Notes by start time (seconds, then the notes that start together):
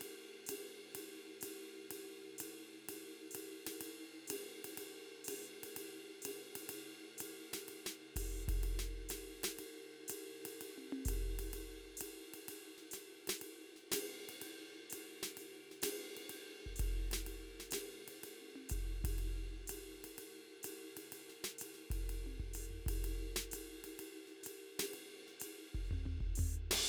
0.01 ride
0.47 hi-hat pedal, ride
0.91 hi-hat pedal, ride
1.41 hi-hat pedal, ride
1.91 ride
2.38 hi-hat pedal, ride
2.85 hi-hat pedal
2.89 ride
3.31 hi-hat pedal, ride
3.67 snare, ride
3.81 ride
4.28 hi-hat pedal, ride
4.64 ride
4.78 ride
5.24 hi-hat pedal, ride
5.63 ride
5.76 ride
6.22 hi-hat pedal, ride
6.55 ride
6.69 ride
7.18 hi-hat pedal, ride
7.53 snare, ride
7.68 ride
7.86 snare
8.16 kick, hi-hat pedal, ride
8.48 kick, ride
8.63 hi-hat pedal, ride
8.79 snare
9.09 snare, hi-hat pedal, ride
9.43 snare, ride
9.54 hi-hat pedal
9.59 ride
10.08 hi-hat pedal, ride
10.45 ride
10.61 ride
10.78 high tom
10.92 high tom
11.05 kick, hi-hat pedal, ride
11.39 ride
11.51 hi-hat pedal, ride
11.97 hi-hat pedal, ride
12.34 ride
12.41 hi-hat pedal
12.48 ride
12.78 snare
12.91 snare, hi-hat pedal, ride
13.27 snare, ride
13.38 hi-hat pedal, ride
13.76 snare
13.92 snare, hi-hat pedal, ride
14.29 ride
14.39 hi-hat pedal, ride
14.90 hi-hat pedal, ride
15.23 snare, ride
15.37 hi-hat pedal, ride
15.71 snare
15.82 snare, hi-hat pedal, ride
16.17 ride
16.27 hi-hat pedal, ride
16.66 kick
16.76 kick, hi-hat pedal, ride
17.11 snare, ride
17.22 hi-hat pedal
17.27 ride
17.60 snare
17.71 snare, hi-hat pedal, ride
18.08 ride
18.17 hi-hat pedal
18.23 ride
18.41 high tom
18.56 high tom
18.69 kick, hi-hat pedal, ride
19.04 kick, ride
19.18 ride
19.67 hi-hat pedal, ride
20.04 ride
20.14 hi-hat pedal, ride
20.63 hi-hat pedal, ride
20.97 ride
21.12 ride
21.29 snare
21.44 snare
21.58 hi-hat pedal, ride
21.74 snare
21.90 kick, ride
22.09 ride
22.26 high tom
22.40 kick
22.54 hi-hat pedal, ride
22.71 floor tom
22.86 kick, ride
23.01 hi-hat pedal, ride
23.36 snare
23.51 hi-hat pedal, ride
23.84 ride
23.96 hi-hat pedal, ride
24.27 snare
24.43 snare, hi-hat pedal, ride
24.79 snare, ride
24.90 hi-hat pedal, ride
25.28 snare
25.40 hi-hat pedal, ride
25.75 kick
25.85 hi-hat pedal
25.91 floor tom, high tom
26.05 floor tom, high tom
26.21 kick
26.35 floor tom, hi-hat pedal, high tom
26.71 snare, ride
26.81 hi-hat pedal